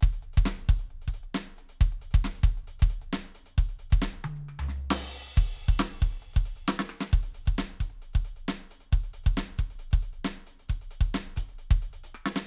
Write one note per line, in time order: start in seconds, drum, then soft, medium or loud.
0.01 kick loud
0.01 closed hi-hat medium
0.13 closed hi-hat medium
0.23 closed hi-hat medium
0.33 closed hi-hat medium
0.37 kick loud
0.46 snare loud
0.57 closed hi-hat soft
0.69 kick loud
0.69 closed hi-hat soft
0.79 closed hi-hat medium
0.91 closed hi-hat soft
1.02 closed hi-hat medium
1.08 kick medium
1.14 closed hi-hat medium
1.23 closed hi-hat soft
1.35 snare loud
1.47 closed hi-hat medium
1.58 closed hi-hat medium
1.69 closed hi-hat medium
1.81 closed hi-hat medium
1.81 kick loud
1.92 closed hi-hat soft
2.02 closed hi-hat medium
2.11 closed hi-hat medium
2.11 kick loud
2.24 snare loud
2.35 closed hi-hat medium
2.44 kick loud
2.44 closed hi-hat medium
2.57 closed hi-hat medium
2.67 closed hi-hat medium
2.79 closed hi-hat medium
2.79 kick loud
2.90 closed hi-hat medium
3.02 closed hi-hat medium
3.13 snare loud
3.25 closed hi-hat medium
3.35 closed hi-hat medium
3.46 closed hi-hat medium
3.58 closed hi-hat medium
3.58 kick loud
3.69 closed hi-hat medium
3.79 closed hi-hat medium
3.90 closed hi-hat medium
3.90 kick loud
4.02 snare loud
4.13 closed hi-hat medium
4.24 high tom loud
4.36 snare soft
4.49 cross-stick soft
4.59 floor tom loud
4.69 snare medium
4.90 snare loud
4.90 crash loud
5.27 closed hi-hat soft
5.37 closed hi-hat medium
5.37 kick loud
5.47 closed hi-hat soft
5.57 closed hi-hat medium
5.67 closed hi-hat soft
5.67 kick loud
5.79 snare loud
6.02 closed hi-hat medium
6.02 kick loud
6.13 closed hi-hat soft
6.22 closed hi-hat medium
6.33 closed hi-hat medium
6.33 kick loud
6.45 closed hi-hat medium
6.56 closed hi-hat medium
6.68 snare loud
6.79 snare loud
6.89 cross-stick medium
7.01 snare loud
7.12 closed hi-hat medium
7.12 kick loud
7.23 closed hi-hat medium
7.35 closed hi-hat medium
7.46 closed hi-hat medium
7.46 kick loud
7.58 snare loud
7.70 closed hi-hat soft
7.80 closed hi-hat medium
7.80 kick medium
7.90 closed hi-hat soft
8.02 closed hi-hat medium
8.14 closed hi-hat medium
8.14 kick loud
8.25 closed hi-hat medium
8.36 closed hi-hat medium
8.48 snare loud
8.60 closed hi-hat medium
8.71 closed hi-hat medium
8.80 closed hi-hat medium
8.92 kick loud
8.92 closed hi-hat medium
9.04 closed hi-hat medium
9.14 closed hi-hat medium
9.24 closed hi-hat soft
9.24 kick loud
9.37 snare loud
9.48 closed hi-hat soft
9.58 closed hi-hat medium
9.58 kick medium
9.70 closed hi-hat medium
9.79 closed hi-hat medium
9.91 closed hi-hat soft
9.91 kick loud
10.02 closed hi-hat medium
10.13 closed hi-hat soft
10.25 snare loud
10.36 closed hi-hat soft
10.47 closed hi-hat medium
10.59 closed hi-hat soft
10.69 closed hi-hat medium
10.69 kick medium
10.81 closed hi-hat medium
10.91 closed hi-hat medium
11.01 closed hi-hat soft
11.01 kick loud
11.14 snare loud
11.26 closed hi-hat soft
11.36 closed hi-hat loud
11.36 kick medium
11.49 closed hi-hat soft
11.59 closed hi-hat medium
11.71 closed hi-hat medium
11.71 kick loud
11.82 closed hi-hat medium
11.93 closed hi-hat medium
12.04 closed hi-hat loud
12.15 cross-stick medium
12.26 snare loud
12.36 snare loud